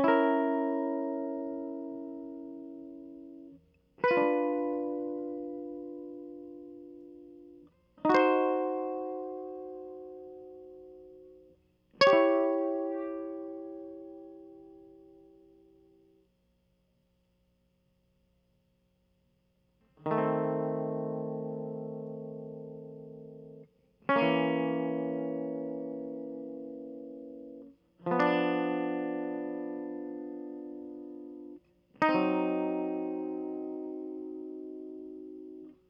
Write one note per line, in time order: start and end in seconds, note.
0.00 3.59 C#4
0.04 3.52 E4
0.09 3.55 A#4
4.04 7.69 B4
4.11 7.69 F4
4.18 7.72 D4
8.05 11.58 D#4
8.10 11.56 F#4
8.15 11.58 C5
12.02 15.18 C#5
12.07 16.28 G4
12.13 16.27 E4
20.07 23.68 D#3
20.12 23.67 A3
20.19 23.67 C4
24.10 27.76 C#4
24.17 27.73 A#3
24.23 27.66 E3
28.07 31.61 F3
28.12 31.58 B3
28.20 31.61 D4
32.02 35.76 D#4
32.09 35.76 C4
32.15 35.70 F#3